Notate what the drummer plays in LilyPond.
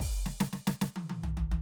\new DrumStaff \drummode { \time 4/4 \tempo 4 = 144 \tuplet 3/2 { <bd hho>8 r8 sn8 sn8 sn8 sn8 sn8 tommh8 tommh8 tomfh8 tomfh8 tomfh8 } | }